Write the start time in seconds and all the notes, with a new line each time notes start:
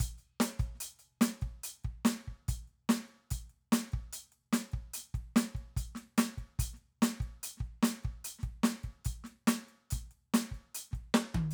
0.00 closed hi-hat, kick
0.18 closed hi-hat
0.40 closed hi-hat, snare
0.59 closed hi-hat, kick
0.74 snare
0.80 closed hi-hat
0.99 closed hi-hat
1.21 closed hi-hat, snare
1.42 kick, closed hi-hat
1.63 closed hi-hat
1.84 kick, closed hi-hat
2.05 closed hi-hat, snare
2.27 kick
2.48 closed hi-hat, kick
2.67 closed hi-hat
2.89 closed hi-hat, snare
3.08 closed hi-hat
3.31 closed hi-hat, kick
3.50 closed hi-hat
3.72 closed hi-hat, snare
3.92 kick, closed hi-hat
4.13 closed hi-hat
4.32 closed hi-hat
4.53 closed hi-hat, snare
4.72 kick, closed hi-hat
4.94 closed hi-hat, snare
5.14 kick, closed hi-hat
5.36 closed hi-hat, snare
5.55 kick, closed hi-hat
5.77 closed hi-hat, kick
5.95 snare, closed hi-hat
6.18 closed hi-hat, snare
6.37 kick, closed hi-hat
6.59 closed hi-hat, kick
6.73 snare, closed hi-hat
7.02 closed hi-hat, snare
7.20 kick, closed hi-hat
7.43 closed hi-hat
7.57 kick, snare
7.64 closed hi-hat
7.83 closed hi-hat, snare
8.04 kick, closed hi-hat
8.24 closed hi-hat
8.39 snare
8.43 kick, closed hi-hat
8.63 closed hi-hat, snare
8.83 kick, closed hi-hat
9.05 closed hi-hat, kick
9.14 kick
9.24 snare, closed hi-hat
9.47 closed hi-hat, snare
9.68 closed hi-hat
9.90 closed hi-hat, kick, snare
10.11 closed hi-hat
10.34 closed hi-hat, snare
10.51 kick, closed hi-hat
10.74 closed hi-hat
10.91 kick, snare, closed hi-hat
11.14 snare
11.34 kick, high tom
11.51 hi-hat pedal